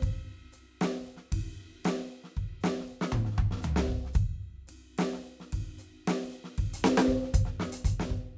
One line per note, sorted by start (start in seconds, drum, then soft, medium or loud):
0.01 kick medium
0.01 hi-hat pedal soft
0.01 ride medium
0.52 hi-hat pedal soft
0.52 ride soft
0.81 snare loud
0.81 ride medium
0.98 kick soft
0.98 snare soft
1.04 hi-hat pedal soft
1.04 ride soft
1.17 snare soft
1.32 kick medium
1.32 ride loud
1.58 ride soft
1.85 snare loud
1.85 ride bell medium
1.93 kick soft
2.07 hi-hat pedal soft
2.07 ride soft
2.24 snare soft
2.37 kick medium
2.37 ride bell soft
2.61 snare loud
2.61 hi-hat pedal soft
2.61 ride bell soft
2.80 kick soft
2.80 snare soft
2.88 ride bell soft
3.01 snare loud
3.12 kick medium
3.12 mid tom loud
3.25 snare soft
3.31 snare soft
3.34 kick loud
3.34 snare soft
3.34 mid tom medium
3.51 snare medium
3.56 snare medium
3.61 kick soft
3.61 snare soft
3.61 floor tom loud
3.61 hi-hat pedal medium
3.76 snare loud
3.87 kick medium
4.05 snare soft
4.13 kick loud
4.13 hi-hat pedal medium
4.13 ride bell soft
4.67 hi-hat pedal soft
4.67 ride medium
4.98 snare loud
4.98 ride medium
5.13 snare soft
5.18 kick soft
5.22 hi-hat pedal soft
5.22 ride soft
5.40 snare soft
5.52 kick medium
5.52 ride medium
5.78 hi-hat pedal medium
6.07 snare loud
6.07 ride loud
6.23 kick soft
6.31 hi-hat pedal soft
6.44 snare medium
6.58 kick medium
6.58 ride medium
6.73 closed hi-hat loud
6.80 kick soft
6.80 hi-hat pedal medium
6.84 snare loud
6.97 snare loud
7.08 kick medium
7.23 snare soft
7.34 kick loud
7.34 closed hi-hat loud
7.45 snare soft
7.60 snare loud
7.72 closed hi-hat loud
7.84 closed hi-hat loud
7.84 kick loud
8.00 snare loud
8.10 kick medium